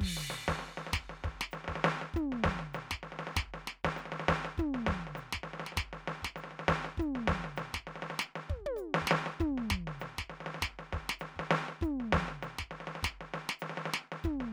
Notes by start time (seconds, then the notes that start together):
0.01 kick, crash
0.08 kick
0.17 snare
0.30 snare, hi-hat pedal
0.48 kick, snare
0.59 snare
0.68 snare
0.78 snare
0.87 snare
0.93 kick, snare, hi-hat pedal
0.99 kick
1.10 snare
1.24 kick, snare
1.33 kick
1.41 snare
1.51 snare, hi-hat pedal
1.65 snare
1.68 kick, snare
1.76 snare
1.84 snare
2.02 snare
2.14 kick, floor tom, hi-hat pedal
2.22 kick
2.32 snare
2.44 kick, snare
2.54 kick
2.59 snare
2.73 snare, hi-hat pedal
2.91 kick, snare
3.03 snare
3.12 snare
3.19 snare
3.27 snare
3.36 kick, snare, hi-hat pedal
3.42 kick
3.54 snare
3.68 snare
3.84 kick, snare
3.97 snare, hi-hat pedal
4.06 snare
4.12 snare
4.20 snare
4.29 kick, snare
4.45 snare
4.58 kick, floor tom, hi-hat pedal
4.74 snare
4.87 kick, snare
4.94 kick
4.97 kick
5.07 snare
5.15 snare, hi-hat pedal
5.33 kick, snare
5.44 snare
5.60 snare
5.67 snare
5.72 snare
5.77 kick, snare, hi-hat pedal
5.93 snare
6.08 snare
6.22 kick, snare
6.36 snare, hi-hat pedal
6.44 snare
6.51 snare
6.59 snare
6.68 kick, snare
6.85 snare
6.98 kick, floor tom, hi-hat pedal
7.15 snare
7.28 kick, snare
7.38 kick
7.44 snare
7.56 snare, hi-hat pedal
7.74 kick, snare
7.87 snare
7.96 snare
8.02 snare
8.10 snare
8.19 snare, hi-hat pedal
8.36 snare
8.49 kick, high tom
8.56 kick
8.60 kick
8.66 high tom
8.76 hi-hat pedal, high tom
8.94 snare
9.01 kick
9.07 snare
9.11 snare
9.26 snare
9.40 kick, hi-hat pedal, floor tom
9.49 kick
9.58 snare
9.70 kick, snare
9.78 kick
9.87 snare
10.00 snare, hi-hat pedal
10.18 kick, snare
10.30 snare
10.41 snare
10.46 snare
10.55 snare
10.62 kick, snare, hi-hat pedal
10.79 snare
10.93 kick, snare
11.02 kick
11.09 snare
11.19 snare, hi-hat pedal
11.36 kick, snare
11.51 snare
11.69 snare
11.82 kick, floor tom, hi-hat pedal
12.00 snare
12.13 kick, snare
12.23 kick
12.28 snare
12.42 snare, hi-hat pedal
12.59 kick, snare
12.71 snare
12.80 snare
12.87 snare
12.95 snare
13.03 kick, snare, hi-hat pedal
13.21 snare
13.34 snare
13.49 snare
13.59 snare, hi-hat pedal
13.70 snare
13.76 snare
13.86 snare
13.94 snare
14.12 snare
14.24 kick, floor tom, hi-hat pedal
14.34 kick
14.41 snare